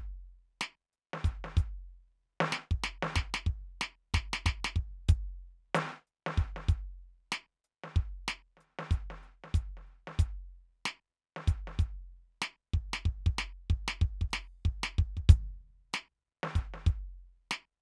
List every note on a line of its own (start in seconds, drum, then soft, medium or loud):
0.62 closed hi-hat medium
0.62 snare loud
0.94 closed hi-hat soft
1.14 snare medium
1.25 closed hi-hat medium
1.25 kick medium
1.45 snare soft
1.58 closed hi-hat medium
1.58 kick medium
2.41 snare loud
2.50 snare loud
2.50 hi-hat pedal soft
2.72 kick medium
2.84 snare loud
3.03 snare medium
3.16 kick medium
3.16 snare loud
3.35 snare loud
3.47 kick medium
3.52 snare soft
3.82 snare loud
4.15 kick medium
4.15 snare loud
4.34 snare loud
4.47 kick medium
4.47 snare loud
4.65 snare loud
4.77 kick medium
5.09 closed hi-hat loud
5.09 kick medium
5.75 closed hi-hat loud
5.75 snare loud
6.08 closed hi-hat soft
6.27 snare medium
6.38 kick medium
6.38 closed hi-hat soft
6.57 snare soft
6.69 closed hi-hat medium
6.69 kick medium
7.33 closed hi-hat medium
7.33 snare loud
7.65 closed hi-hat soft
7.84 snare soft
7.96 kick medium
7.96 closed hi-hat soft
8.29 closed hi-hat medium
8.29 snare loud
8.58 snare soft
8.58 closed hi-hat soft
8.80 snare medium
8.92 closed hi-hat medium
8.92 kick medium
9.11 snare soft
9.24 closed hi-hat soft
9.45 snare soft
9.55 closed hi-hat medium
9.55 kick medium
9.78 snare soft
9.87 closed hi-hat soft
10.08 snare soft
10.20 closed hi-hat loud
10.20 kick medium
10.86 closed hi-hat medium
10.86 snare loud
11.37 snare soft
11.48 closed hi-hat medium
11.48 kick medium
11.68 snare soft
11.80 closed hi-hat medium
11.80 kick medium
12.43 closed hi-hat loud
12.43 snare loud
12.74 kick medium
12.94 snare loud
13.06 kick medium
13.11 snare soft
13.27 kick medium
13.39 snare loud
13.71 kick medium
13.89 snare loud
14.02 kick medium
14.22 kick medium
14.30 kick soft
14.30 ride soft
14.34 snare loud
14.66 kick medium
14.84 snare loud
14.99 kick medium
15.18 kick soft
15.30 closed hi-hat loud
15.30 kick loud
15.94 closed hi-hat medium
15.94 snare loud
16.44 snare medium
16.56 closed hi-hat medium
16.56 kick medium
16.74 snare soft
16.87 closed hi-hat medium
16.87 kick medium
17.52 closed hi-hat medium
17.52 snare loud